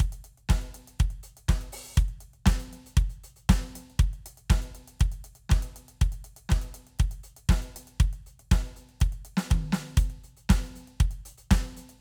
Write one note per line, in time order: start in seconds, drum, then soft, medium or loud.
0.01 kick loud
0.01 closed hi-hat medium
0.13 closed hi-hat medium
0.25 closed hi-hat medium
0.39 closed hi-hat soft
0.50 kick loud
0.50 snare loud
0.62 closed hi-hat soft
0.75 closed hi-hat medium
0.89 closed hi-hat medium
1.00 kick loud
1.00 closed hi-hat soft
1.11 closed hi-hat soft
1.24 closed hi-hat medium
1.38 closed hi-hat medium
1.49 kick loud
1.49 snare medium
1.62 closed hi-hat medium
1.73 open hi-hat loud
1.88 open hi-hat soft
1.96 kick loud
1.96 closed hi-hat medium
1.96 hi-hat pedal soft
2.09 closed hi-hat soft
2.22 closed hi-hat medium
2.34 closed hi-hat soft
2.47 kick loud
2.47 snare loud
2.60 closed hi-hat medium
2.66 kick soft
2.74 closed hi-hat medium
2.87 closed hi-hat medium
2.98 kick loud
2.98 closed hi-hat soft
3.11 closed hi-hat soft
3.25 closed hi-hat medium
3.37 closed hi-hat medium
3.50 kick loud
3.50 snare loud
3.64 closed hi-hat soft
3.76 closed hi-hat medium
3.91 closed hi-hat soft
4.00 kick loud
4.00 closed hi-hat soft
4.14 closed hi-hat soft
4.27 closed hi-hat medium
4.38 closed hi-hat medium
4.51 kick loud
4.51 snare loud
4.63 closed hi-hat medium
4.72 kick soft
4.76 closed hi-hat medium
4.89 closed hi-hat medium
5.01 kick loud
5.01 closed hi-hat medium
5.13 closed hi-hat medium
5.25 closed hi-hat medium
5.36 closed hi-hat medium
5.50 kick loud
5.50 snare medium
5.63 closed hi-hat medium
5.74 kick soft
5.74 closed hi-hat medium
5.89 closed hi-hat medium
6.02 kick loud
6.02 closed hi-hat medium
6.13 closed hi-hat medium
6.25 closed hi-hat medium
6.37 closed hi-hat medium
6.50 kick loud
6.50 snare medium
6.62 closed hi-hat medium
6.73 kick soft
6.73 closed hi-hat medium
6.88 closed hi-hat soft
7.00 kick loud
7.00 closed hi-hat medium
7.12 closed hi-hat medium
7.24 closed hi-hat medium
7.38 closed hi-hat medium
7.50 kick loud
7.50 snare loud
7.63 closed hi-hat medium
7.77 closed hi-hat loud
7.88 closed hi-hat medium
8.01 kick loud
8.01 closed hi-hat soft
8.14 closed hi-hat soft
8.27 closed hi-hat medium
8.40 closed hi-hat soft
8.52 kick loud
8.52 snare loud
8.66 closed hi-hat soft
8.77 closed hi-hat medium
8.90 closed hi-hat soft
9.01 kick loud
9.01 closed hi-hat medium
9.13 closed hi-hat soft
9.26 closed hi-hat medium
9.38 snare loud
9.51 kick loud
9.51 high tom loud
9.73 snare loud
9.98 closed hi-hat loud
9.98 kick loud
10.11 closed hi-hat soft
10.25 closed hi-hat soft
10.38 closed hi-hat medium
10.50 kick loud
10.50 snare loud
10.65 closed hi-hat soft
10.77 closed hi-hat medium
10.88 closed hi-hat soft
11.01 kick loud
11.01 closed hi-hat soft
11.12 closed hi-hat medium
11.26 closed hi-hat medium
11.39 closed hi-hat medium
11.52 kick loud
11.52 snare loud
11.65 closed hi-hat soft
11.78 closed hi-hat medium
11.90 closed hi-hat medium